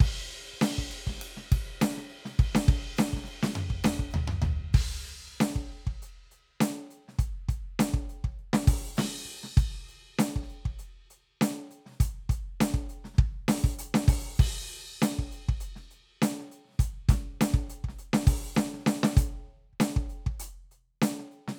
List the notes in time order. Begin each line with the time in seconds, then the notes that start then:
0.01 kick, ride
0.54 kick
0.62 snare, hi-hat pedal, ride
0.79 kick
0.83 snare
0.90 snare, ride
1.07 kick, snare
1.15 snare
1.18 snare, ride
1.23 snare, hi-hat pedal
1.37 snare
1.52 kick, ride
1.82 snare, hi-hat pedal, ride
1.98 snare
2.06 snare
2.10 snare, ride
2.26 snare
2.31 snare
2.39 kick, hi-hat pedal, ride
2.56 snare
2.68 kick, hi-hat pedal, ride
2.97 snare, hi-hat pedal, ride
3.14 kick, snare
3.24 snare, ride
3.43 snare
3.54 hi-hat pedal, mid tom
3.71 kick
3.84 snare, hi-hat pedal, ride bell
4.00 kick
4.11 floor tom, hi-hat pedal
4.28 mid tom
4.42 kick, floor tom, hi-hat pedal
4.71 kick, hi-hat pedal
4.75 kick, crash
5.39 open hi-hat, kick, snare
5.44 hi-hat pedal
5.56 kick
5.73 closed hi-hat
5.87 kick
6.03 closed hi-hat
6.32 closed hi-hat
6.61 closed hi-hat, snare
6.91 closed hi-hat
7.09 snare
7.13 snare
7.19 closed hi-hat, kick
7.49 closed hi-hat, kick
7.80 closed hi-hat, snare
7.94 kick
8.10 closed hi-hat
8.25 kick
8.40 closed hi-hat
8.54 snare
8.68 open hi-hat, kick
8.98 snare, hi-hat pedal, crash
9.26 kick, closed hi-hat
9.44 snare
9.58 closed hi-hat, kick
9.89 closed hi-hat
10.19 closed hi-hat, snare
10.37 kick
10.43 snare
10.50 closed hi-hat
10.66 kick
10.79 closed hi-hat
11.11 closed hi-hat
11.42 closed hi-hat, snare
11.68 snare
11.71 closed hi-hat, snare
11.86 snare
11.89 snare
11.92 snare
12.01 closed hi-hat, kick
12.30 closed hi-hat, kick
12.61 closed hi-hat, snare
12.75 kick
12.90 closed hi-hat
13.05 snare
13.15 snare
13.19 kick, snare
13.49 open hi-hat, snare
13.64 kick
13.74 hi-hat pedal
13.79 closed hi-hat
13.95 snare
14.09 open hi-hat, kick
14.39 kick, hi-hat pedal, crash
14.69 closed hi-hat
15.03 closed hi-hat, snare
15.19 kick
15.32 closed hi-hat
15.49 kick
15.61 closed hi-hat
15.76 snare
15.91 closed hi-hat
16.23 closed hi-hat, snare
16.40 snare
16.49 closed hi-hat, snare
16.65 snare
16.68 snare
16.71 snare
16.74 snare
16.80 closed hi-hat, kick
17.09 closed hi-hat, kick, snare
17.41 closed hi-hat, snare
17.54 kick
17.67 closed hi-hat, snare
17.85 kick
17.89 snare
17.99 closed hi-hat
18.14 snare
18.28 open hi-hat, kick
18.57 snare, hi-hat pedal
18.74 snare
18.79 snare
18.84 snare
18.87 snare
19.04 snare
19.17 open hi-hat, kick
19.73 kick
19.81 open hi-hat, snare, hi-hat pedal
19.97 kick
20.10 closed hi-hat
20.27 kick
20.40 closed hi-hat
20.72 closed hi-hat
21.02 closed hi-hat, snare
21.20 snare
21.32 closed hi-hat
21.48 snare